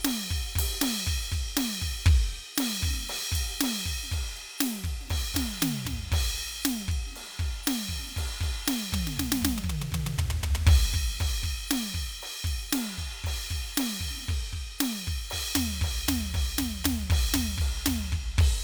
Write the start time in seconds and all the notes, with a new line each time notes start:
0.01 snare, hi-hat pedal
0.05 crash
0.30 kick, crash
0.55 kick, crash
0.81 snare, crash
1.06 kick, crash
1.32 kick, crash
1.57 snare, crash
1.81 kick, crash
2.06 kick, crash
2.55 snare, hi-hat pedal, crash
2.81 kick, snare
2.86 snare
2.90 snare
2.94 snare
2.97 snare
3.03 snare
3.07 snare, crash
3.32 kick, crash
3.58 snare, hi-hat pedal
3.63 crash
3.85 kick, crash
4.03 snare
4.11 kick, crash
4.37 crash
4.58 snare, hi-hat pedal, crash
4.84 kick, crash
5.01 snare
5.05 snare
5.08 kick, snare, crash
5.10 snare
5.18 snare
5.34 kick, snare, crash
5.60 snare, hi-hat pedal, mid tom
5.85 kick, snare, floor tom
6.12 kick, crash
6.37 crash
6.62 snare, hi-hat pedal, crash
6.88 kick, crash
7.06 snare
7.10 snare
7.13 snare
7.15 snare, crash
7.39 kick, crash
7.63 hi-hat pedal
7.67 snare, crash
7.89 kick, crash
7.99 snare
8.03 snare
8.06 snare
8.09 snare
8.16 kick, snare, crash
8.41 kick, crash
8.65 snare, hi-hat pedal, crash
8.92 kick, high tom
9.07 snare
9.17 kick, snare
9.32 snare
9.42 kick, snare
9.58 high tom
9.64 kick
9.69 mid tom
9.81 mid tom
9.92 kick, mid tom
10.06 mid tom
10.18 kick, floor tom
10.30 floor tom
10.43 kick, floor tom
10.55 floor tom
10.67 kick, crash
10.94 kick
11.20 kick, crash
11.42 kick, crash
11.67 snare, hi-hat pedal
11.72 crash
11.94 kick, crash
12.11 snare
12.22 crash
12.44 kick, crash
12.69 snare, hi-hat pedal
12.74 crash
12.98 kick, crash
13.24 kick, crash
13.50 kick, crash
13.74 snare, hi-hat pedal
13.79 crash
14.00 kick, crash
14.11 snare
14.15 snare
14.18 snare
14.20 snare
14.24 snare
14.25 kick, snare
14.29 crash
14.53 kick
14.78 snare, hi-hat pedal, crash
15.07 kick
15.26 snare
15.30 kick, crash
15.55 snare, floor tom
15.81 kick, crash
16.08 snare, floor tom
16.34 kick, crash
16.58 snare, floor tom
16.84 snare, floor tom
17.10 kick, crash
17.34 snare, floor tom
17.58 kick, crash
17.86 snare, floor tom
18.12 kick
18.38 kick, crash